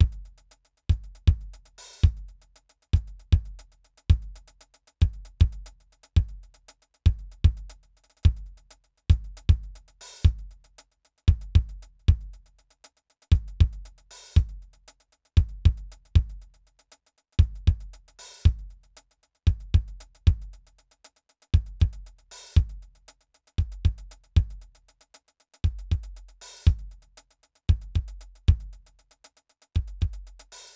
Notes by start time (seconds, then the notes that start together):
0.01 kick, closed hi-hat
0.13 closed hi-hat
0.26 closed hi-hat
0.38 closed hi-hat
0.52 closed hi-hat
0.65 closed hi-hat
0.78 closed hi-hat
0.90 kick, closed hi-hat
1.04 closed hi-hat
1.15 closed hi-hat
1.28 kick, closed hi-hat
1.41 closed hi-hat
1.54 closed hi-hat
1.66 closed hi-hat
1.78 open hi-hat
1.93 open hi-hat
2.02 kick, closed hi-hat, hi-hat pedal
2.17 closed hi-hat
2.29 closed hi-hat
2.42 closed hi-hat
2.56 closed hi-hat
2.70 closed hi-hat
2.83 closed hi-hat
2.94 kick, closed hi-hat
3.08 closed hi-hat
3.20 closed hi-hat
3.33 kick, closed hi-hat
3.46 closed hi-hat
3.59 closed hi-hat
3.72 closed hi-hat
3.85 closed hi-hat
3.98 closed hi-hat
4.10 kick, closed hi-hat
4.22 closed hi-hat
4.36 closed hi-hat
4.48 closed hi-hat
4.61 closed hi-hat
4.74 closed hi-hat
4.88 closed hi-hat
5.02 kick, closed hi-hat
5.14 closed hi-hat
5.25 closed hi-hat
5.40 kick, closed hi-hat
5.53 closed hi-hat
5.66 closed hi-hat
5.81 closed hi-hat
5.93 closed hi-hat
6.04 closed hi-hat
6.17 kick, closed hi-hat
6.29 closed hi-hat
6.43 closed hi-hat
6.54 closed hi-hat
6.69 closed hi-hat
6.82 closed hi-hat
6.94 closed hi-hat
7.06 kick, closed hi-hat
7.19 closed hi-hat
7.32 closed hi-hat
7.45 kick, closed hi-hat
7.57 closed hi-hat
7.70 closed hi-hat
7.83 closed hi-hat
7.97 closed hi-hat
8.04 closed hi-hat
8.10 closed hi-hat
8.17 closed hi-hat
8.24 kick, closed hi-hat
8.37 closed hi-hat
8.46 closed hi-hat
8.58 closed hi-hat
8.71 closed hi-hat
8.84 closed hi-hat
8.98 closed hi-hat
9.10 closed hi-hat, kick
9.25 closed hi-hat
9.37 closed hi-hat
9.49 kick, closed hi-hat
9.64 closed hi-hat
9.76 closed hi-hat
9.88 closed hi-hat
10.01 open hi-hat
10.14 open hi-hat
10.23 kick, hi-hat pedal
10.27 closed hi-hat
10.39 closed hi-hat
10.51 closed hi-hat
10.65 closed hi-hat
10.79 closed hi-hat
10.92 closed hi-hat
11.05 closed hi-hat
11.18 closed hi-hat
11.28 kick, closed hi-hat
11.42 closed hi-hat
11.56 kick, closed hi-hat
11.69 closed hi-hat
11.83 closed hi-hat
12.00 closed hi-hat
12.09 kick, closed hi-hat
12.21 closed hi-hat
12.34 closed hi-hat
12.46 closed hi-hat
12.59 closed hi-hat
12.71 closed hi-hat
12.85 closed hi-hat
12.97 closed hi-hat
13.10 closed hi-hat
13.22 closed hi-hat
13.32 kick, closed hi-hat
13.48 closed hi-hat
13.61 kick, closed hi-hat
13.73 closed hi-hat
13.86 closed hi-hat
13.98 closed hi-hat
14.11 open hi-hat
14.24 open hi-hat
14.35 kick, closed hi-hat, hi-hat pedal
14.49 closed hi-hat
14.62 closed hi-hat
14.74 closed hi-hat
14.88 closed hi-hat
15.00 closed hi-hat
15.13 closed hi-hat
15.25 closed hi-hat
15.37 kick, closed hi-hat
15.49 closed hi-hat
15.65 kick, closed hi-hat
15.78 closed hi-hat
15.92 closed hi-hat
16.06 closed hi-hat
16.16 kick, closed hi-hat
16.30 closed hi-hat
16.42 closed hi-hat
16.54 closed hi-hat
16.67 closed hi-hat
16.79 closed hi-hat
16.92 closed hi-hat
17.07 closed hi-hat
17.18 closed hi-hat
17.33 closed hi-hat
17.39 kick, closed hi-hat
17.56 closed hi-hat
17.68 kick, closed hi-hat
17.81 closed hi-hat
17.94 closed hi-hat
18.08 open hi-hat
18.19 open hi-hat
18.36 open hi-hat
18.43 kick, closed hi-hat, hi-hat pedal
18.59 closed hi-hat
18.71 closed hi-hat
18.84 closed hi-hat
18.97 closed hi-hat
19.11 closed hi-hat
19.23 closed hi-hat
19.35 closed hi-hat
19.47 kick, closed hi-hat
19.61 closed hi-hat
19.74 kick, closed hi-hat
19.88 closed hi-hat
20.01 closed hi-hat
20.15 closed hi-hat
20.27 kick, closed hi-hat
20.42 closed hi-hat
20.54 closed hi-hat
20.67 closed hi-hat
20.79 closed hi-hat
20.92 closed hi-hat
21.05 closed hi-hat
21.17 closed hi-hat
21.30 closed hi-hat
21.42 closed hi-hat
21.54 kick, closed hi-hat
21.67 closed hi-hat
21.81 kick, closed hi-hat
21.93 closed hi-hat
22.07 closed hi-hat
22.19 closed hi-hat
22.32 open hi-hat
22.45 open hi-hat
22.54 kick, closed hi-hat, hi-hat pedal
22.70 closed hi-hat
22.83 closed hi-hat
22.95 closed hi-hat
23.08 closed hi-hat
23.21 closed hi-hat
23.35 closed hi-hat
23.48 closed hi-hat
23.59 kick, closed hi-hat
23.72 closed hi-hat
23.85 kick, closed hi-hat
23.98 closed hi-hat
24.12 closed hi-hat
24.24 closed hi-hat
24.37 kick, closed hi-hat
24.51 closed hi-hat
24.62 closed hi-hat
24.75 closed hi-hat
24.89 closed hi-hat
25.01 closed hi-hat
25.15 closed hi-hat
25.28 closed hi-hat
25.40 closed hi-hat
25.54 closed hi-hat
25.64 kick, closed hi-hat
25.79 closed hi-hat
25.92 kick, closed hi-hat
26.04 closed hi-hat
26.17 closed hi-hat
26.29 closed hi-hat
26.42 open hi-hat
26.56 open hi-hat
26.65 kick, hi-hat pedal
26.69 closed hi-hat
26.92 closed hi-hat
27.02 closed hi-hat
27.18 closed hi-hat
27.31 closed hi-hat
27.43 closed hi-hat
27.56 closed hi-hat
27.69 kick, closed hi-hat
27.82 closed hi-hat
27.95 kick, closed hi-hat
28.08 closed hi-hat
28.21 closed hi-hat
28.36 closed hi-hat
28.48 kick, closed hi-hat
28.60 closed hi-hat
28.73 closed hi-hat
28.87 closed hi-hat
28.99 closed hi-hat
29.11 closed hi-hat
29.25 closed hi-hat
29.37 closed hi-hat
29.50 closed hi-hat
29.62 closed hi-hat
29.75 kick, closed hi-hat
29.88 closed hi-hat
30.01 kick, closed hi-hat
30.14 closed hi-hat
30.27 closed hi-hat
30.40 closed hi-hat
30.52 open hi-hat
30.67 open hi-hat